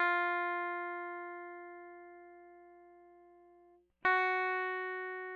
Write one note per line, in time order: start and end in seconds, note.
0.00 3.78 F4
4.05 5.36 F#4